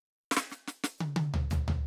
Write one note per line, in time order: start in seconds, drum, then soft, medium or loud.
0.31 snare loud
0.37 snare loud
0.50 snare medium
0.50 hi-hat pedal soft
0.67 snare medium
0.84 snare loud
0.98 hi-hat pedal soft
0.98 high tom loud
1.16 high tom loud
1.34 floor tom loud
1.50 floor tom loud
1.50 hi-hat pedal medium
1.68 floor tom loud